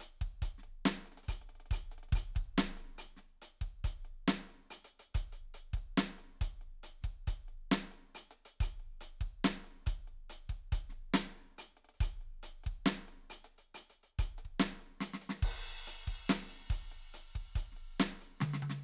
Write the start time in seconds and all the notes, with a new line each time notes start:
0.01 closed hi-hat
0.22 kick, closed hi-hat
0.43 closed hi-hat, kick
0.59 snare
0.64 closed hi-hat
0.86 closed hi-hat, snare
1.07 closed hi-hat
1.13 closed hi-hat
1.18 closed hi-hat
1.24 closed hi-hat
1.29 closed hi-hat, kick
1.42 closed hi-hat
1.50 closed hi-hat
1.56 closed hi-hat
1.61 closed hi-hat
1.67 closed hi-hat
1.72 closed hi-hat, kick
1.92 closed hi-hat
1.99 closed hi-hat
2.04 closed hi-hat
2.09 kick, closed hi-hat
2.16 closed hi-hat
2.36 kick, closed hi-hat
2.58 closed hi-hat, snare
2.78 closed hi-hat
2.99 closed hi-hat
3.17 snare, closed hi-hat
3.43 closed hi-hat
3.62 kick, closed hi-hat
3.85 closed hi-hat, kick
4.06 closed hi-hat
4.29 closed hi-hat, snare
4.50 closed hi-hat
4.71 closed hi-hat
4.85 closed hi-hat
5.00 closed hi-hat
5.15 closed hi-hat, kick
5.33 closed hi-hat
5.55 closed hi-hat
5.74 kick, closed hi-hat
5.98 closed hi-hat, snare
6.19 closed hi-hat
6.42 closed hi-hat, kick
6.62 closed hi-hat
6.84 closed hi-hat
7.03 kick, snare, closed hi-hat
7.28 closed hi-hat, kick
7.49 closed hi-hat
7.72 closed hi-hat, snare
7.92 closed hi-hat
8.16 closed hi-hat
8.32 closed hi-hat
8.46 closed hi-hat
8.61 closed hi-hat, kick
8.80 closed hi-hat
9.02 closed hi-hat
9.22 kick, closed hi-hat
9.45 closed hi-hat, snare
9.65 closed hi-hat
9.87 closed hi-hat, kick
10.08 closed hi-hat
10.30 closed hi-hat
10.50 kick, closed hi-hat
10.73 closed hi-hat, kick
10.90 snare, closed hi-hat
11.15 closed hi-hat, snare
11.33 closed hi-hat
11.39 closed hi-hat
11.59 closed hi-hat
11.78 closed hi-hat
11.85 closed hi-hat
11.90 closed hi-hat
11.95 closed hi-hat
12.01 closed hi-hat, kick
12.22 closed hi-hat
12.44 closed hi-hat
12.64 kick, closed hi-hat
12.87 closed hi-hat, snare
13.09 closed hi-hat
13.31 closed hi-hat
13.45 closed hi-hat
13.59 closed hi-hat
13.75 closed hi-hat
13.91 closed hi-hat
14.04 closed hi-hat
14.20 closed hi-hat, kick
14.39 closed hi-hat
14.46 kick
14.60 closed hi-hat, snare
14.80 closed hi-hat
15.01 closed hi-hat, snare
15.14 snare
15.22 closed hi-hat
15.30 snare
15.43 kick, crash
15.64 closed hi-hat
15.88 closed hi-hat
16.08 kick, closed hi-hat
16.30 closed hi-hat, snare
16.50 closed hi-hat
16.71 closed hi-hat, kick
16.92 closed hi-hat
17.15 closed hi-hat
17.36 kick, closed hi-hat
17.56 closed hi-hat, kick
17.73 snare
17.77 closed hi-hat
18.01 closed hi-hat, snare
18.21 closed hi-hat
18.41 snare, high tom
18.54 snare
18.63 high tom
18.70 snare